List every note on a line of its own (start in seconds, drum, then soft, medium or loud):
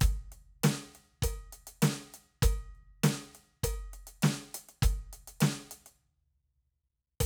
0.01 kick loud
0.01 closed hi-hat loud
0.01 hi-hat pedal medium
0.32 closed hi-hat soft
0.64 snare loud
0.64 closed hi-hat loud
0.95 closed hi-hat soft
1.23 kick loud
1.23 closed hi-hat loud
1.53 closed hi-hat medium
1.67 closed hi-hat medium
1.82 snare loud
1.82 closed hi-hat loud
2.14 closed hi-hat medium
2.43 kick loud
2.43 closed hi-hat loud
2.75 closed hi-hat soft
3.04 snare loud
3.04 closed hi-hat loud
3.35 closed hi-hat soft
3.64 kick loud
3.64 closed hi-hat loud
3.94 closed hi-hat soft
4.07 closed hi-hat medium
4.23 snare loud
4.23 closed hi-hat medium
4.55 closed hi-hat medium
4.69 closed hi-hat soft
4.83 kick loud
4.83 closed hi-hat loud
5.13 closed hi-hat medium
5.28 closed hi-hat medium
5.41 snare loud
5.41 closed hi-hat loud
5.71 closed hi-hat medium
5.86 closed hi-hat soft
7.21 closed hi-hat loud
7.21 kick loud